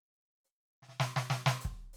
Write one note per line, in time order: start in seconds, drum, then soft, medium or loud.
0.44 hi-hat pedal soft
0.82 snare soft
0.89 snare soft
1.00 snare loud
1.16 snare medium
1.30 snare loud
1.46 snare loud
1.61 closed hi-hat medium
1.65 kick medium
1.93 hi-hat pedal medium